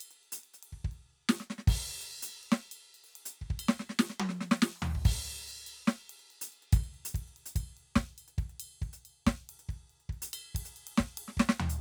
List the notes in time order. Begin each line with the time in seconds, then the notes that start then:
0.01 ride bell
0.11 closed hi-hat
0.24 ride
0.33 closed hi-hat
0.44 ride
0.54 closed hi-hat
0.63 ride
0.73 kick
0.85 kick
0.92 mid tom, ride, floor tom
1.30 snare, hi-hat pedal
1.41 snare
1.51 snare
1.59 snare
1.68 kick, hi-hat pedal, crash
2.01 closed hi-hat
2.12 ride
2.23 closed hi-hat
2.33 ride
2.44 ride
2.53 snare
2.72 ride bell
2.95 ride bell
3.05 open hi-hat
3.16 ride
3.26 closed hi-hat
3.42 kick
3.51 kick
3.60 ride bell
3.69 snare
3.80 snare
3.90 snare
4.00 snare
4.10 snare
4.21 high tom
4.30 snare
4.41 snare
4.52 snare
4.63 snare
4.76 crash
4.83 floor tom
4.95 kick, crash
5.06 kick, crash
5.48 hi-hat pedal
5.67 ride bell
5.88 snare, hi-hat pedal
6.10 ride
6.20 closed hi-hat
6.31 ride
6.42 closed hi-hat
6.53 ride bell
6.63 closed hi-hat
6.73 kick, ride bell
6.84 closed hi-hat
6.95 ride
7.06 closed hi-hat
7.15 kick, ride
7.28 closed hi-hat
7.37 ride
7.46 closed hi-hat
7.56 kick, ride bell
7.78 ride
7.96 kick, snare
8.19 ride bell
8.29 closed hi-hat
8.39 kick, ride
8.50 closed hi-hat
8.60 ride bell
8.82 kick, ride
8.94 closed hi-hat
9.06 ride bell
9.27 kick, snare
9.50 ride
9.60 closed hi-hat
9.69 kick, ride
9.90 ride, floor tom
10.01 closed hi-hat
10.10 kick, ride
10.23 closed hi-hat
10.34 ride bell
10.55 kick, ride
10.66 closed hi-hat
10.77 ride bell
10.88 ride
10.98 kick, snare
11.18 ride
11.29 snare
11.38 kick, snare
11.50 snare
11.60 floor tom
11.70 closed hi-hat